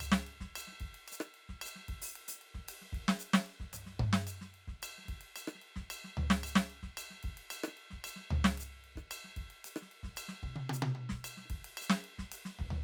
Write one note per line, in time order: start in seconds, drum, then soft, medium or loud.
0.01 hi-hat pedal medium
0.01 ride bell loud
0.12 snare loud
0.27 ride medium
0.41 kick soft
0.41 snare soft
0.56 hi-hat pedal medium
0.56 ride bell loud
0.68 snare soft
0.73 cross-stick soft
0.80 kick soft
0.80 ride medium
0.95 ride medium
1.08 ride bell medium
1.12 hi-hat pedal medium
1.21 cross-stick medium
1.27 cross-stick soft
1.35 ride soft
1.49 kick soft
1.49 snare soft
1.62 hi-hat pedal medium
1.62 ride bell loud
1.76 snare soft
1.89 kick soft
1.89 ride medium
2.02 open hi-hat loud
2.10 hi-hat pedal soft
2.16 ride medium
2.29 open hi-hat loud
2.42 ride medium
2.55 kick soft
2.55 snare soft
2.68 hi-hat pedal medium
2.68 ride loud
2.82 snare soft
2.93 kick medium
2.93 ride soft
3.00 kick soft
3.09 snare loud
3.20 hi-hat pedal medium
3.20 ride medium
3.34 snare loud
3.47 ride soft
3.60 kick soft
3.60 snare soft
3.73 hi-hat pedal medium
3.73 ride medium
3.73 floor tom soft
3.87 snare soft
4.00 kick medium
4.00 mid tom loud
4.07 kick soft
4.10 kick soft
4.10 snare loud
4.27 hi-hat pedal medium
4.27 ride bell medium
4.42 snare soft
4.55 ride soft
4.68 kick soft
4.68 snare soft
4.83 hi-hat pedal medium
4.83 ride bell loud
4.99 snare soft
5.06 kick soft
5.06 snare soft
5.06 ride medium
5.21 ride medium
5.36 hi-hat pedal medium
5.36 ride bell loud
5.48 cross-stick medium
5.55 snare soft
5.62 ride soft
5.76 kick soft
5.76 snare soft
5.91 hi-hat pedal medium
5.91 ride bell loud
6.05 snare soft
6.18 floor tom loud
6.31 snare loud
6.44 hi-hat pedal medium
6.44 ride bell loud
6.56 snare loud
6.70 ride soft
6.83 kick soft
6.83 snare soft
6.98 hi-hat pedal medium
6.98 ride bell loud
7.11 snare soft
7.23 kick soft
7.23 ride medium
7.31 kick soft
7.38 ride medium
7.51 hi-hat pedal medium
7.51 ride bell loud
7.64 cross-stick medium
7.68 cross-stick soft
7.78 ride soft
7.91 kick soft
7.91 snare soft
8.05 hi-hat pedal medium
8.05 ride bell loud
8.16 snare soft
8.31 floor tom loud
8.45 snare loud
8.58 hi-hat pedal medium
8.58 ride medium
8.85 ride soft
8.96 kick soft
8.96 cross-stick soft
9.11 hi-hat pedal medium
9.11 ride bell loud
9.25 snare soft
9.37 kick soft
9.37 ride medium
9.43 kick soft
9.51 ride medium
9.65 hi-hat pedal medium
9.65 ride medium
9.76 cross-stick medium
9.83 snare soft
9.92 ride soft
10.04 kick soft
10.04 snare soft
10.09 kick soft
10.17 hi-hat pedal medium
10.17 ride bell loud
10.29 snare medium
10.43 kick soft
10.43 high tom medium
10.56 high tom medium
10.70 hi-hat pedal medium
10.70 high tom loud
10.83 high tom loud
10.96 high tom soft
11.10 kick soft
11.10 snare medium
11.16 kick soft
11.25 hi-hat pedal medium
11.25 ride bell loud
11.38 snare soft
11.46 cross-stick soft
11.50 kick soft
11.50 ride medium
11.57 kick soft
11.65 ride medium
11.78 ride bell loud
11.82 hi-hat pedal medium
11.90 snare loud
12.05 ride medium
12.19 kick soft
12.19 snare medium
12.32 hi-hat pedal medium
12.32 ride loud
12.46 snare medium
12.59 kick soft
12.59 floor tom medium
12.67 kick soft
12.71 floor tom loud